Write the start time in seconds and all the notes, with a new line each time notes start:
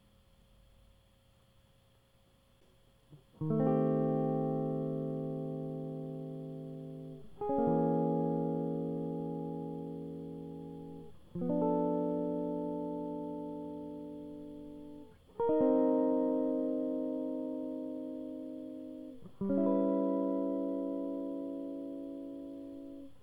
3.41 D#3
3.51 A3
3.60 C4
3.68 G4
7.42 G#4
7.48 C#4
7.59 A#3
7.68 E3
11.35 F3
11.42 B3
11.50 D4
11.63 A4
15.43 A#4
15.48 D#4
15.61 C4
19.39 G3
19.50 C#4
19.58 E4
19.68 B4